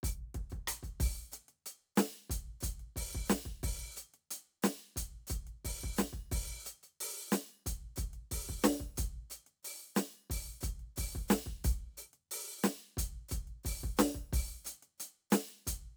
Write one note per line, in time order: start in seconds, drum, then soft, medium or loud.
0.02 open hi-hat loud
0.02 kick medium
0.34 kick medium
0.34 closed hi-hat soft
0.50 closed hi-hat soft
0.50 kick medium
0.67 closed hi-hat loud
0.67 cross-stick medium
0.83 closed hi-hat soft
0.83 kick soft
1.00 open hi-hat loud
1.00 kick medium
1.32 closed hi-hat medium
1.32 hi-hat pedal medium
1.48 closed hi-hat soft
1.66 open hi-hat medium
1.96 closed hi-hat medium
1.96 snare loud
1.96 hi-hat pedal soft
2.13 closed hi-hat soft
2.30 open hi-hat medium
2.30 kick medium
2.60 closed hi-hat loud
2.60 kick medium
2.60 hi-hat pedal medium
2.79 closed hi-hat soft
2.96 open hi-hat loud
2.96 kick medium
3.15 kick medium
3.27 closed hi-hat medium
3.27 snare loud
3.27 hi-hat pedal medium
3.45 kick soft
3.45 closed hi-hat soft
3.63 open hi-hat loud
3.63 kick medium
3.96 closed hi-hat medium
3.96 hi-hat pedal soft
4.14 closed hi-hat soft
4.31 open hi-hat loud
4.62 closed hi-hat medium
4.62 snare loud
4.62 hi-hat pedal medium
4.79 closed hi-hat soft
4.96 open hi-hat loud
4.96 kick medium
5.27 closed hi-hat medium
5.27 kick medium
5.27 hi-hat pedal medium
5.47 closed hi-hat soft
5.64 open hi-hat loud
5.64 kick medium
5.83 kick medium
5.96 closed hi-hat medium
5.96 snare loud
5.96 hi-hat pedal medium
6.13 kick soft
6.13 closed hi-hat soft
6.31 open hi-hat loud
6.31 kick medium
6.65 closed hi-hat medium
6.65 hi-hat pedal medium
6.83 closed hi-hat soft
7.00 open hi-hat loud
7.31 closed hi-hat medium
7.31 snare loud
7.31 hi-hat pedal medium
7.49 closed hi-hat soft
7.66 closed hi-hat loud
7.66 kick medium
7.96 closed hi-hat medium
7.96 kick medium
7.96 hi-hat pedal medium
8.13 closed hi-hat soft
8.31 open hi-hat loud
8.31 kick medium
8.49 kick medium
8.62 closed hi-hat medium
8.62 snare loud
8.62 hi-hat pedal medium
8.80 kick soft
8.80 closed hi-hat soft
8.96 closed hi-hat loud
8.96 kick medium
8.96 hi-hat pedal soft
9.30 closed hi-hat medium
9.30 hi-hat pedal medium
9.46 closed hi-hat soft
9.63 open hi-hat loud
9.63 hi-hat pedal soft
9.95 closed hi-hat medium
9.95 snare loud
9.95 hi-hat pedal medium
10.13 closed hi-hat soft
10.30 open hi-hat loud
10.30 kick medium
10.61 closed hi-hat medium
10.61 kick medium
10.61 hi-hat pedal medium
10.79 closed hi-hat soft
10.96 open hi-hat loud
10.96 kick medium
10.96 hi-hat pedal soft
11.15 kick medium
11.28 closed hi-hat medium
11.28 snare loud
11.28 hi-hat pedal medium
11.46 kick soft
11.46 closed hi-hat soft
11.63 open hi-hat loud
11.63 kick medium
11.63 hi-hat pedal soft
11.97 open hi-hat medium
11.97 hi-hat pedal medium
12.13 closed hi-hat soft
12.31 open hi-hat loud
12.63 closed hi-hat medium
12.63 snare loud
12.63 hi-hat pedal medium
12.80 closed hi-hat soft
12.97 closed hi-hat loud
12.97 kick medium
13.28 closed hi-hat medium
13.28 kick medium
13.28 hi-hat pedal medium
13.47 closed hi-hat soft
13.63 open hi-hat loud
13.63 kick medium
13.63 hi-hat pedal soft
13.83 kick medium
13.97 closed hi-hat medium
13.97 snare loud
13.97 hi-hat pedal soft
14.14 kick soft
14.14 closed hi-hat soft
14.33 open hi-hat loud
14.33 kick medium
14.64 closed hi-hat medium
14.64 hi-hat pedal medium
14.82 closed hi-hat soft
14.98 closed hi-hat medium
14.98 hi-hat pedal soft
15.30 closed hi-hat loud
15.30 snare loud
15.30 hi-hat pedal soft
15.48 closed hi-hat soft
15.65 closed hi-hat loud
15.65 kick medium
15.65 hi-hat pedal soft